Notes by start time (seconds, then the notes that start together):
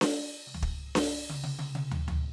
0.01 snare, crash
0.47 high tom
0.54 floor tom
0.63 kick
0.95 snare, crash
1.30 high tom
1.44 high tom
1.59 high tom
1.75 high tom
1.92 floor tom
2.08 floor tom